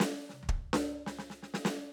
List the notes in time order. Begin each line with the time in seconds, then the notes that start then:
0.00 snare
0.29 snare
0.34 high tom
0.43 floor tom
0.49 kick
0.73 snare
1.07 snare
1.19 snare
1.30 snare
1.43 snare
1.54 snare
1.65 snare